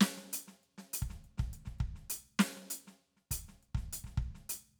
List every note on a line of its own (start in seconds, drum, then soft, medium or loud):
0.01 snare loud
0.18 snare soft
0.33 closed hi-hat loud
0.48 snare soft
0.64 closed hi-hat soft
0.78 snare soft
0.94 closed hi-hat loud
1.02 kick medium
1.10 snare soft
1.24 closed hi-hat soft
1.38 kick medium
1.38 snare soft
1.53 closed hi-hat medium
1.65 kick soft
1.65 snare soft
1.79 kick medium
1.79 closed hi-hat soft
1.96 snare soft
2.03 snare soft
2.10 closed hi-hat loud
2.39 snare loud
2.57 snare soft
2.71 closed hi-hat loud
2.88 snare soft
3.02 closed hi-hat soft
3.17 snare soft
3.31 closed hi-hat loud
3.31 kick soft
3.49 snare soft
3.63 closed hi-hat soft
3.75 kick medium
3.75 snare soft
3.93 closed hi-hat loud
4.04 kick soft
4.04 snare soft
4.18 kick medium
4.23 closed hi-hat soft
4.35 snare soft
4.50 closed hi-hat loud